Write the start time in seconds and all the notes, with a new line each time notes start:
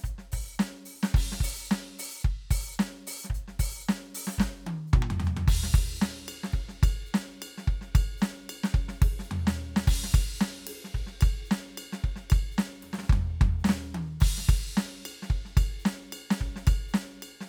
0.01 closed hi-hat, kick, hi-hat pedal
0.18 snare
0.32 open hi-hat, kick
0.55 hi-hat pedal
0.60 snare
0.86 open hi-hat
1.03 snare
1.09 hi-hat pedal
1.14 kick, crash
1.32 snare
1.41 open hi-hat, kick
1.67 snare, hi-hat pedal
1.99 open hi-hat
2.22 kick, hi-hat pedal
2.51 open hi-hat, kick
2.75 hi-hat pedal
2.79 snare
3.07 open hi-hat
3.25 snare, hi-hat pedal
3.30 kick
3.35 closed hi-hat
3.48 snare
3.60 open hi-hat, kick
3.82 hi-hat pedal
3.89 snare
4.15 open hi-hat
4.27 snare
4.35 kick, snare, hi-hat pedal
4.40 snare
4.67 high tom
4.88 hi-hat pedal
4.93 kick, mid tom
5.02 mid tom
5.10 floor tom
5.20 floor tom
5.24 floor tom, hi-hat pedal
5.37 floor tom
5.48 kick, crash
5.64 snare
5.74 kick, ride, floor tom
5.96 hi-hat pedal
6.02 snare
6.28 ride bell
6.44 snare
6.53 kick, ride
6.69 snare
6.83 kick, ride bell
7.06 hi-hat pedal
7.14 snare
7.42 ride bell
7.58 snare
7.68 kick
7.81 snare
7.95 kick, ride bell
8.18 hi-hat pedal
8.22 snare
8.50 ride bell
8.64 snare
8.74 kick
8.89 snare
9.02 kick, ride
9.19 snare
9.24 hi-hat pedal
9.31 floor tom
9.47 snare
9.76 snare
9.88 kick, crash
10.04 snare
10.14 kick, ride bell
10.37 hi-hat pedal
10.41 snare
10.67 ride
10.85 snare
10.95 kick
11.07 snare
11.21 kick, ride bell
11.46 hi-hat pedal
11.51 snare
11.78 ride bell
11.93 snare
12.04 kick
12.16 snare
12.30 kick, ride bell
12.52 hi-hat pedal
12.58 snare
12.83 ride, floor tom
12.93 snare
12.99 snare
13.03 snare
13.08 kick, snare
13.13 snare, floor tom
13.41 kick, floor tom
13.60 hi-hat pedal
13.65 snare
13.69 snare
13.95 high tom
14.21 kick, crash
14.38 snare
14.49 kick, ride bell
14.74 snare, hi-hat pedal
15.06 ride bell
15.23 snare
15.30 kick
15.45 snare
15.57 kick, ride bell
15.80 hi-hat pedal
15.86 snare
16.13 ride bell
16.31 snare
16.41 kick
16.56 snare
16.67 kick, ride bell
16.89 hi-hat pedal
16.94 snare
17.23 ride bell
17.41 snare